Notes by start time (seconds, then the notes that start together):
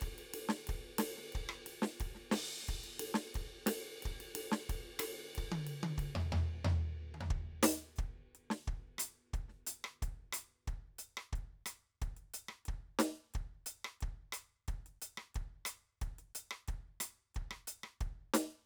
0.01 kick, ride
0.18 ride
0.34 ride
0.49 snare
0.67 kick, ride
0.98 snare, ride
1.17 snare
1.32 kick, ride
1.49 cross-stick
1.66 ride
1.82 snare
2.00 kick, ride
2.15 snare
2.31 snare, ride
2.63 snare
2.68 kick, ride
2.84 ride
2.99 ride
3.14 snare
3.34 kick, ride
3.66 snare, ride
4.02 kick, ride
4.20 ride
4.35 ride
4.52 snare
4.69 kick, ride
4.99 cross-stick, ride
5.35 kick, ride
5.52 high tom
5.67 ride
5.83 high tom
5.98 kick, ride
6.15 floor tom
6.32 floor tom
6.65 floor tom
7.14 high tom
7.21 floor tom
7.30 kick
7.63 open hi-hat, snare
7.96 kick, hi-hat pedal
8.35 closed hi-hat
8.50 snare
8.67 kick, closed hi-hat
8.98 closed hi-hat, cross-stick
9.33 kick, closed hi-hat
9.48 snare
9.67 closed hi-hat
9.84 cross-stick
10.02 kick, closed hi-hat
10.32 closed hi-hat, cross-stick
10.67 kick, closed hi-hat
10.98 closed hi-hat
11.17 cross-stick
11.32 kick, closed hi-hat
11.66 closed hi-hat, cross-stick
12.02 kick, closed hi-hat
12.11 kick
12.17 closed hi-hat
12.34 closed hi-hat
12.48 cross-stick
12.65 kick, closed hi-hat
12.99 closed hi-hat, snare
13.34 kick, closed hi-hat
13.66 closed hi-hat
13.84 cross-stick
14.01 kick, closed hi-hat
14.32 closed hi-hat, cross-stick
14.68 kick, closed hi-hat
14.86 closed hi-hat
15.02 closed hi-hat
15.17 cross-stick
15.34 kick, closed hi-hat
15.65 closed hi-hat, cross-stick
16.01 kick, closed hi-hat
16.18 closed hi-hat
16.35 closed hi-hat
16.51 cross-stick
16.68 kick, closed hi-hat
17.00 closed hi-hat, cross-stick
17.35 kick, closed hi-hat
17.51 cross-stick
17.67 closed hi-hat
17.83 cross-stick
18.01 kick, closed hi-hat
18.34 open hi-hat, snare